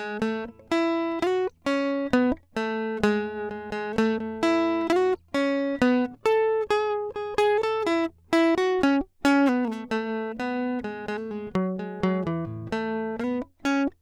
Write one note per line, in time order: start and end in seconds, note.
0.01 0.23 G#3
0.23 0.45 A3
0.45 0.70 A3
0.72 1.24 E4
1.24 1.53 F#4
1.67 2.13 C#4
2.14 2.38 B3
2.57 3.02 A3
3.04 3.52 G#3
3.52 3.72 G#3
3.73 3.97 G#3
4.00 4.20 A3
4.22 4.86 A3
4.44 4.90 E4
4.91 5.20 F#4
5.35 5.81 C#4
5.83 6.09 B3
6.27 6.69 A4
6.71 7.13 G#4
7.17 7.37 G#4
7.39 7.62 G#4
7.65 7.95 A4
7.88 8.11 E4
8.34 8.59 E4
8.59 8.87 F#4
8.84 9.11 C#4
9.26 9.47 C#4
9.48 9.66 B3
9.66 9.87 A3
9.92 10.38 A3
10.41 10.84 B3
10.86 11.09 G#3
11.10 11.19 G#3
11.19 11.32 A3
11.32 11.54 G#3
11.56 12.02 F#3
11.80 12.28 G#3
12.04 12.27 F#3
12.28 12.46 E3
12.28 12.47 E3
12.46 12.73 A2
12.73 13.19 A3
13.21 13.47 B3
13.66 13.92 C#4